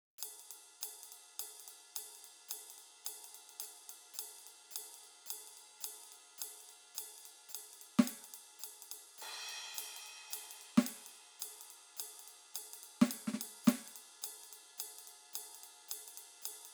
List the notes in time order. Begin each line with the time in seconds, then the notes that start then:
0.18 percussion
0.23 ride
0.39 ride
0.51 ride
0.81 ride, percussion
1.03 ride
1.12 ride
1.39 ride, percussion
1.60 ride
1.68 ride
1.95 ride, percussion
2.15 ride
2.24 ride
2.49 ride, percussion
2.70 ride
2.78 ride
3.05 ride, percussion
3.24 ride
3.34 ride
3.49 ride
3.60 ride, percussion
3.89 ride
4.14 percussion
4.19 ride
4.38 ride
4.47 ride
4.71 percussion
4.76 ride
4.94 ride
5.03 ride
5.26 percussion
5.30 ride
5.47 ride
5.57 ride
5.81 ride, percussion
6.03 ride
6.12 ride
6.38 ride, percussion
6.60 ride
6.69 ride
6.95 ride, percussion
7.18 ride
7.25 ride
7.49 percussion
7.55 ride
7.73 ride
7.81 ride
7.99 snare, percussion
8.07 ride
8.24 ride
8.34 ride
8.59 percussion
8.64 ride
8.82 ride
8.91 ride
9.18 percussion, ride
9.41 ride
9.49 ride
9.74 ride, percussion
9.96 ride
10.06 ride
10.30 ride, percussion
10.51 ride
10.61 ride
10.77 snare, percussion
10.86 ride
11.06 ride
11.15 ride
11.39 ride, percussion
11.61 ride
11.70 ride
11.97 ride, percussion
12.19 ride
12.28 ride
12.54 ride, percussion
12.73 ride
12.83 ride
13.01 snare, percussion
13.11 ride
13.27 snare
13.33 snare
13.41 ride
13.64 snare, percussion
13.68 ride
13.88 ride
13.96 ride
14.22 ride, percussion
14.43 ride
14.53 ride
14.78 ride, percussion
14.98 ride
15.07 ride
15.33 ride, percussion
15.55 ride
15.63 ride
15.88 ride, percussion
16.08 ride
16.17 ride
16.42 ride, percussion
16.65 ride